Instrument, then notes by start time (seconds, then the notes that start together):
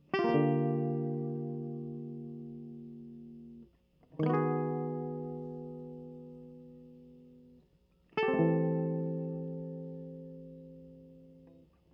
electric guitar
0.14 G4
0.19 F4
0.25 A#3
0.35 D3
4.21 D#3
4.27 B3 F#4
4.34 G#4
8.18 A4
8.23 G4
8.29 C4
8.35 A3
8.40 E3